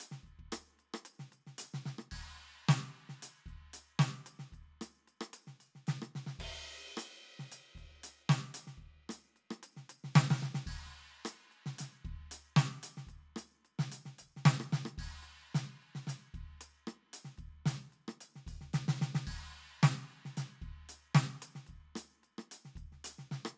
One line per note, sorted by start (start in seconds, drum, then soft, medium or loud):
0.01 percussion loud
0.12 snare soft
0.24 kick soft
0.24 percussion soft
0.40 kick soft
0.53 cross-stick medium
0.53 percussion loud
0.80 percussion soft
0.95 cross-stick medium
1.06 percussion medium
1.20 snare soft
1.33 percussion soft
1.48 snare soft
1.59 percussion loud
1.75 snare soft
1.86 snare soft
1.99 cross-stick medium
2.12 kick soft
2.12 crash medium
2.40 percussion soft
2.69 snare loud
2.69 percussion medium
2.96 percussion soft
3.10 snare soft
3.23 percussion loud
3.47 kick soft
3.47 percussion soft
3.74 percussion loud
4.00 snare medium
4.00 percussion soft
4.27 percussion medium
4.40 snare soft
4.53 kick soft
4.53 percussion soft
4.82 cross-stick medium
4.82 percussion medium
5.08 percussion soft
5.22 cross-stick medium
5.34 percussion medium
5.48 snare soft
5.61 percussion soft
5.76 snare soft
5.88 snare medium
5.88 percussion medium
6.03 cross-stick medium
6.16 snare soft
6.27 snare soft
6.40 kick soft
6.40 ride medium
6.98 cross-stick medium
6.98 percussion loud
7.25 percussion soft
7.40 snare soft
7.53 percussion medium
7.76 kick soft
7.76 percussion soft
8.04 percussion loud
8.30 snare medium
8.55 percussion loud
8.68 snare soft
8.78 kick soft
8.78 percussion soft
9.10 cross-stick medium
9.10 percussion medium
9.37 percussion soft
9.51 cross-stick medium
9.64 percussion medium
9.77 snare soft
9.90 percussion medium
10.05 snare soft
10.16 snare loud
10.16 percussion soft
10.31 snare medium
10.43 snare medium
10.55 snare medium
10.67 kick soft
10.67 crash medium
10.87 snare soft
11.26 cross-stick medium
11.26 percussion loud
11.52 percussion soft
11.67 snare soft
11.79 snare soft
11.79 percussion loud
12.06 kick soft
12.06 percussion soft
12.32 percussion loud
12.57 snare loud
12.84 percussion loud
12.98 snare soft
13.08 kick soft
13.08 percussion soft
13.37 cross-stick medium
13.37 percussion medium
13.66 percussion soft
13.80 snare medium
13.93 percussion loud
14.06 snare soft
14.19 kick soft
14.19 percussion medium
14.37 snare soft
14.46 snare loud
14.61 cross-stick medium
14.73 snare medium
14.86 cross-stick medium
14.99 kick soft
14.99 crash medium
15.24 percussion soft
15.55 snare medium
15.55 percussion medium
15.82 percussion soft
15.96 snare soft
16.08 snare medium
16.08 percussion medium
16.35 kick soft
16.35 percussion soft
16.51 snare soft
16.62 percussion loud
16.88 cross-stick medium
17.14 percussion loud
17.25 snare soft
17.39 kick soft
17.39 percussion soft
17.67 snare medium
17.67 percussion loud
17.93 percussion soft
18.09 cross-stick medium
18.21 percussion medium
18.36 snare soft
18.47 kick soft
18.47 percussion medium
18.62 snare soft
18.74 snare medium
18.74 percussion medium
18.89 snare medium
19.02 snare medium
19.16 snare medium
19.28 kick soft
19.28 crash medium
19.54 percussion soft
19.84 snare loud
19.84 percussion medium
20.09 percussion soft
20.26 snare soft
20.38 snare medium
20.38 percussion medium
20.62 kick soft
20.62 percussion soft
20.90 percussion medium
21.16 snare loud
21.43 percussion loud
21.56 snare soft
21.67 kick soft
21.67 percussion soft
21.96 cross-stick medium
21.96 percussion loud
22.24 percussion soft
22.39 cross-stick medium
22.52 percussion medium
22.66 snare soft
22.76 kick soft
22.76 percussion soft
22.93 snare soft
23.05 percussion loud
23.19 snare soft
23.32 snare soft
23.46 cross-stick medium